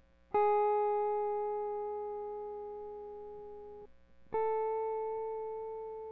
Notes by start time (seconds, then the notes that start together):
0.35 G#4
4.34 A4